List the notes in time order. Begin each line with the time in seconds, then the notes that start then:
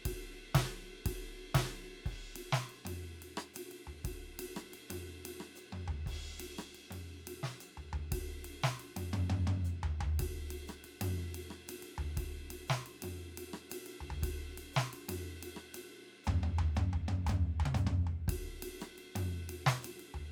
0.06 kick, ride
0.55 kick, snare, ride
1.06 kick, ride
1.34 ride
1.42 ride
1.55 kick, snare, ride
2.06 kick, ride
2.36 ride
2.53 snare, hi-hat pedal
2.70 ride
2.85 mid tom, ride
3.22 ride
3.37 cross-stick
3.54 hi-hat pedal, ride
3.72 ride
3.87 floor tom
4.03 kick, hi-hat pedal, ride
4.39 ride
4.56 cross-stick, hi-hat pedal
4.74 ride
4.90 mid tom, ride
5.26 ride
5.40 cross-stick
5.56 hi-hat pedal, ride bell
5.73 mid tom
5.88 floor tom
6.06 kick, ride
6.40 ride
6.58 cross-stick, hi-hat pedal
6.75 ride
6.91 mid tom, ride
7.27 ride
7.43 snare
7.60 hi-hat pedal, ride bell
7.78 floor tom
7.93 floor tom
8.12 kick, ride
8.30 ride
8.45 ride
8.63 snare, hi-hat pedal
8.80 ride
8.97 mid tom, ride
9.12 hi-hat pedal, mid tom
9.30 mid tom
9.47 mid tom
9.65 hi-hat pedal
9.83 floor tom
10.01 floor tom
10.20 kick, ride
10.51 ride
10.68 cross-stick, hi-hat pedal
10.84 ride
11.01 mid tom, ride
11.35 ride
11.51 cross-stick
11.68 hi-hat pedal, ride
11.83 ride
11.98 floor tom
12.17 kick, ride
12.51 ride
12.68 snare, hi-hat pedal
12.86 ride
13.03 mid tom, ride
13.18 hi-hat pedal
13.38 ride
13.54 cross-stick
13.70 hi-hat pedal, ride
13.86 ride
14.01 floor tom
14.10 floor tom
14.23 kick, ride
14.58 ride
14.74 snare, hi-hat pedal
14.93 ride
15.09 mid tom, ride
15.22 hi-hat pedal
15.43 ride
15.57 cross-stick
15.74 hi-hat pedal, ride
16.24 floor tom, hi-hat pedal, mid tom
16.43 mid tom
16.59 floor tom
16.75 hi-hat pedal, mid tom
16.93 floor tom
17.08 mid tom
17.27 floor tom, hi-hat pedal, mid tom
17.60 floor tom
17.66 high tom
17.75 hi-hat pedal, mid tom
17.87 mid tom
18.07 floor tom
18.28 kick, ride
18.63 ride
18.80 cross-stick, hi-hat pedal
18.98 ride
19.16 mid tom, ride
19.29 hi-hat pedal
19.49 ride
19.67 snare
19.83 hi-hat pedal, ride
20.00 ride
20.14 floor tom